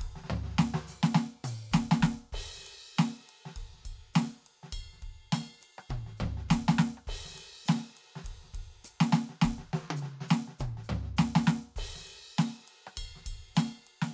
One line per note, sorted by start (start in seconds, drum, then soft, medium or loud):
0.01 kick medium
0.01 ride medium
0.08 kick soft
0.11 kick soft
0.17 snare soft
0.25 snare soft
0.31 floor tom loud
0.45 snare soft
0.50 snare soft
0.60 snare loud
0.75 snare loud
0.89 snare soft
0.89 hi-hat pedal medium
1.04 snare loud
1.16 snare loud
1.45 hi-hat pedal loud
1.45 mid tom loud
1.73 kick soft
1.73 snare loud
1.73 hi-hat pedal loud
1.93 snare loud
2.02 kick soft
2.02 snare loud
2.34 kick soft
2.34 crash loud
2.40 kick soft
2.43 kick soft
2.59 snare soft
2.68 ride medium
2.99 snare loud
2.99 hi-hat pedal medium
2.99 ride loud
3.10 snare soft
3.31 ride medium
3.47 snare medium
3.53 hi-hat pedal soft
3.57 kick soft
3.57 ride medium
3.63 kick soft
3.75 snare soft
3.79 snare soft
3.83 kick soft
3.83 snare soft
3.87 ride bell medium
3.92 kick soft
3.95 kick soft
4.15 snare loud
4.15 hi-hat pedal medium
4.15 ride bell medium
4.23 snare soft
4.43 hi-hat pedal soft
4.48 ride medium
4.65 snare soft
4.73 kick soft
4.73 hi-hat pedal soft
4.73 ride bell loud
4.80 kick soft
4.94 snare soft
5.00 kick soft
5.00 snare soft
5.04 ride soft
5.34 snare loud
5.34 hi-hat pedal medium
5.34 ride bell loud
5.62 hi-hat pedal soft
5.62 ride medium
5.80 cross-stick medium
5.90 kick soft
5.90 hi-hat pedal soft
5.90 mid tom loud
5.97 kick soft
6.00 kick soft
6.08 snare soft
6.19 kick soft
6.19 hi-hat pedal soft
6.19 floor tom loud
6.39 snare soft
6.50 kick soft
6.50 snare loud
6.50 hi-hat pedal loud
6.70 snare loud
6.80 snare loud
6.99 cross-stick soft
7.09 kick soft
7.09 crash loud
7.15 kick soft
7.18 kick soft
7.26 snare soft
7.36 snare soft
7.36 ride medium
7.67 snare loud
7.67 hi-hat pedal medium
7.67 ride loud
7.76 snare soft
7.98 ride medium
8.17 snare medium
8.24 kick soft
8.24 hi-hat pedal soft
8.24 ride medium
8.45 snare soft
8.51 kick soft
8.51 snare soft
8.56 ride medium
8.62 kick soft
8.64 kick soft
8.86 hi-hat pedal loud
8.86 ride medium
9.02 snare loud
9.14 snare loud
9.14 hi-hat pedal medium
9.31 snare soft
9.43 kick soft
9.43 snare loud
9.43 hi-hat pedal soft
9.60 snare soft
9.69 hi-hat pedal soft
9.75 snare loud
9.92 high tom loud
9.98 hi-hat pedal medium
10.04 snare medium
10.22 snare medium
10.30 snare loud
10.30 hi-hat pedal medium
10.49 snare soft
10.60 kick soft
10.60 hi-hat pedal medium
10.60 mid tom loud
10.67 kick soft
10.70 kick soft
10.79 snare soft
10.85 hi-hat pedal soft
10.91 floor tom loud
11.04 snare soft
11.18 snare loud
11.18 hi-hat pedal medium
11.37 snare loud
11.44 hi-hat pedal medium
11.49 snare loud
11.77 kick medium
11.77 hi-hat pedal medium
11.77 crash loud
11.84 kick soft
11.88 kick soft
11.96 snare soft
12.02 snare soft
12.09 snare soft
12.09 ride medium
12.39 snare loud
12.39 hi-hat pedal medium
12.39 ride loud
12.69 ride medium
12.88 cross-stick medium
12.97 kick soft
12.97 hi-hat pedal soft
12.97 ride bell loud
13.17 snare soft
13.27 kick soft
13.27 ride bell medium
13.34 kick soft
13.37 kick soft
13.57 snare loud
13.57 hi-hat pedal medium
13.57 ride bell loud
13.88 ride medium
14.03 snare loud